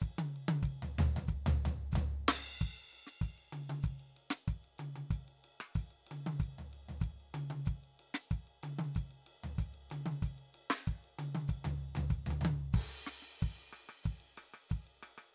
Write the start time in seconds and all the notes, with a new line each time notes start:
0.01 kick, hi-hat pedal, ride
0.19 high tom
0.37 ride
0.49 high tom
0.63 kick, hi-hat pedal, ride
0.83 floor tom
0.99 floor tom
1.17 floor tom
1.28 kick, hi-hat pedal
1.47 floor tom
1.66 floor tom
1.92 kick, floor tom, hi-hat pedal
2.29 snare, crash
2.61 kick, hi-hat pedal, ride
2.79 ride
2.94 ride
3.08 snare
3.22 kick, hi-hat pedal, ride
3.39 ride
3.45 hi-hat pedal
3.53 high tom, ride
3.70 high tom
3.84 kick, hi-hat pedal, ride
4.01 ride
4.17 ride
4.31 snare
4.48 kick, hi-hat pedal, ride
4.65 ride
4.79 high tom, ride
4.97 high tom
5.11 kick, hi-hat pedal, ride
5.29 ride
5.45 ride
5.61 cross-stick
5.76 kick, hi-hat pedal, ride
5.91 ride
6.08 ride
6.12 high tom
6.27 high tom
6.40 kick, hi-hat pedal
6.44 ride
6.59 floor tom, ride
6.74 ride
6.89 floor tom
7.01 kick, hi-hat pedal, ride
7.21 ride
7.35 high tom, ride
7.51 high tom
7.66 kick, hi-hat pedal, ride
7.85 ride
8.00 ride
8.15 snare
8.31 kick, hi-hat pedal, ride
8.48 ride
8.64 high tom, ride
8.80 high tom
8.96 kick, hi-hat pedal, ride
9.12 ride
9.27 ride
9.44 floor tom
9.59 kick, hi-hat pedal, ride
9.75 ride
9.91 high tom, ride
10.07 high tom
10.23 kick, hi-hat pedal, ride
10.39 ride
10.55 ride
10.71 snare
10.87 kick, hi-hat pedal, ride
11.05 hi-hat pedal, ride
11.20 high tom, ride
11.36 high tom
11.49 kick, hi-hat pedal, ride
11.65 floor tom, high tom
11.96 floor tom, high tom
12.11 kick, hi-hat pedal
12.27 floor tom
12.31 high tom
12.42 floor tom, high tom
12.74 kick, hi-hat pedal, crash, ride
13.07 snare, ride
13.23 snare, ride
13.41 kick, hi-hat pedal, ride
13.59 ride
13.74 cross-stick, ride
13.90 cross-stick
14.04 kick, hi-hat pedal, ride
14.21 ride
14.38 cross-stick, ride
14.55 cross-stick
14.70 kick, hi-hat pedal, ride
14.88 ride
15.04 cross-stick, ride
15.19 cross-stick